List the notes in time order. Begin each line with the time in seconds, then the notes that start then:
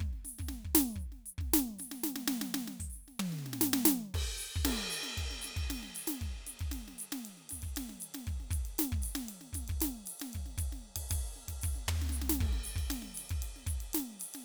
0.01 kick, snare
0.14 snare
0.25 snare, hi-hat pedal
0.39 kick, snare
0.49 snare
0.65 kick
0.75 snare, hi-hat pedal
0.96 kick, hi-hat pedal
1.13 snare
1.26 hi-hat pedal
1.39 kick, snare
1.52 snare, hi-hat pedal
1.68 snare
1.76 kick, hi-hat pedal
1.80 snare
1.92 snare
2.04 snare
2.16 snare
2.28 snare
2.42 snare
2.55 snare
2.68 snare
2.80 open hi-hat, kick
2.91 hi-hat pedal
2.96 snare
3.09 snare
3.20 high tom
3.33 snare
3.39 snare
3.47 snare
3.54 snare
3.62 snare
3.74 snare
3.86 snare
4.15 kick, crash
4.38 hi-hat pedal
4.56 kick
4.63 snare, hi-hat pedal, ride
4.81 snare
4.91 hi-hat pedal, ride
5.04 snare, ride
5.18 kick, ride
5.32 snare
5.42 snare, hi-hat pedal, ride
5.57 kick, ride
5.71 snare, ride
5.84 snare
5.95 hi-hat pedal, ride
6.08 snare, ride
6.22 kick, ride
6.34 snare
6.47 snare, hi-hat pedal, ride
6.60 kick, ride
6.72 snare, ride
6.89 snare
6.99 hi-hat pedal, ride
7.13 snare, ride
7.26 ride
7.38 snare
7.50 kick, snare, hi-hat pedal, ride
7.63 kick, ride
7.74 snare, hi-hat pedal, ride
7.90 snare
8.01 hi-hat pedal, ride
8.15 snare, ride
8.28 kick, ride
8.41 snare
8.51 kick, hi-hat pedal, ride
8.66 ride
8.79 snare, ride
8.93 kick
9.03 hi-hat pedal, ride
9.16 snare, ride
9.29 ride
9.42 snare
9.54 kick, snare, hi-hat pedal, ride
9.68 kick, ride
9.81 snare, ride
10.06 hi-hat pedal, ride
10.20 snare, ride
10.34 kick, ride
10.47 snare
10.58 kick, hi-hat pedal, ride
10.73 snare
10.89 snare
10.97 kick, ride
11.10 kick, hi-hat pedal, ride
11.36 snare
11.49 kick, ride
11.62 kick, hi-hat pedal, ride
11.76 snare
11.87 floor tom, hi-hat pedal
12.02 snare
12.10 snare, hi-hat pedal
12.16 snare
12.22 snare
12.30 snare
12.38 kick, hi-hat pedal
12.42 ride
12.53 snare
12.64 hi-hat pedal, ride
12.76 kick, ride
12.89 snare, hi-hat pedal, ride
13.03 snare
13.15 hi-hat pedal, ride
13.20 snare
13.30 kick, ride
13.41 hi-hat pedal, ride
13.57 snare
13.67 kick, hi-hat pedal, ride
13.81 ride
13.94 snare, ride
14.09 snare
14.20 hi-hat pedal, ride
14.35 snare, ride